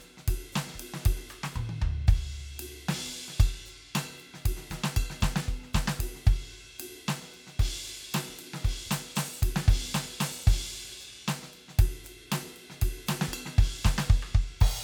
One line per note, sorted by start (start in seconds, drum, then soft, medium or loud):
0.01 hi-hat pedal soft
0.01 ride soft
0.17 snare soft
0.28 kick medium
0.28 ride loud
0.52 snare loud
0.52 hi-hat pedal medium
0.52 ride medium
0.67 snare medium
0.72 kick soft
0.72 snare soft
0.77 hi-hat pedal soft
0.77 ride loud
0.94 snare medium
1.05 kick loud
1.05 ride loud
1.17 snare soft
1.29 cross-stick medium
1.29 hi-hat pedal medium
1.43 snare loud
1.54 kick soft
1.54 hi-hat pedal medium
1.54 mid tom loud
1.69 high tom medium
1.78 kick medium
1.78 floor tom loud
1.78 hi-hat pedal soft
2.07 kick loud
2.07 hi-hat pedal medium
2.07 ride medium
2.59 hi-hat pedal medium
2.59 ride loud
2.88 snare loud
2.88 ride loud
2.99 snare medium
3.02 snare soft
3.06 kick soft
3.06 snare soft
3.11 hi-hat pedal soft
3.11 ride soft
3.28 snare medium
3.40 kick loud
3.40 ride bell loud
3.66 hi-hat pedal medium
3.66 ride soft
3.95 snare loud
3.95 ride bell loud
4.06 snare soft
4.09 snare soft
4.12 snare soft
4.16 snare soft
4.16 hi-hat pedal soft
4.16 ride soft
4.34 snare medium
4.45 kick medium
4.45 ride loud
4.57 snare soft
4.61 snare soft
4.67 kick soft
4.67 snare soft
4.67 hi-hat pedal medium
4.71 snare medium
4.84 snare loud
4.96 kick medium
4.96 ride bell loud
5.10 snare medium
5.20 kick medium
5.20 snare loud
5.20 hi-hat pedal medium
5.36 snare loud
5.48 kick medium
5.48 snare soft
5.48 ride soft
5.63 snare soft
5.73 kick medium
5.73 snare loud
5.73 hi-hat pedal medium
5.87 snare loud
5.97 kick medium
5.97 hi-hat pedal soft
5.97 ride loud
6.15 snare soft
6.26 kick loud
6.26 hi-hat pedal medium
6.26 ride medium
6.79 hi-hat pedal medium
6.79 ride loud
7.08 snare loud
7.08 ride medium
7.22 snare soft
7.30 hi-hat pedal soft
7.30 ride soft
7.47 snare soft
7.59 kick loud
7.59 ride loud
7.84 hi-hat pedal medium
7.84 ride soft
8.14 snare loud
8.14 ride loud
8.26 kick soft
8.26 snare soft
8.30 snare soft
8.34 snare soft
8.34 hi-hat pedal soft
8.37 snare soft
8.37 ride medium
8.53 snare medium
8.65 kick medium
8.65 ride loud
8.86 kick soft
8.86 hi-hat pedal soft
8.91 closed hi-hat loud
8.91 snare loud
9.16 open hi-hat loud
9.16 snare loud
9.40 kick medium
9.40 hi-hat pedal medium
9.40 ride loud
9.56 snare loud
9.68 kick loud
9.68 ride loud
9.94 open hi-hat loud
9.94 snare loud
9.94 hi-hat pedal medium
10.20 open hi-hat loud
10.20 snare loud
10.47 kick loud
10.47 ride loud
11.00 hi-hat pedal medium
11.28 snare loud
11.28 ride bell medium
11.42 snare medium
11.53 ride soft
11.68 snare soft
11.79 kick loud
11.79 ride loud
12.04 hi-hat pedal medium
12.04 ride medium
12.32 snare loud
12.32 ride loud
12.45 snare soft
12.56 ride soft
12.70 snare medium
12.82 kick medium
12.82 ride loud
13.06 snare loud
13.06 hi-hat pedal medium
13.06 ride loud
13.21 snare loud
13.28 kick soft
13.28 hi-hat pedal soft
13.33 ride bell loud
13.46 snare medium
13.58 kick loud
13.58 ride loud
13.82 kick loud
13.82 snare loud
13.82 hi-hat pedal medium
13.82 ride soft
13.98 snare loud
14.10 kick loud
14.10 ride medium
14.22 cross-stick medium
14.35 kick loud
14.58 kick soft
14.58 crash loud
14.61 kick loud
14.61 mid tom medium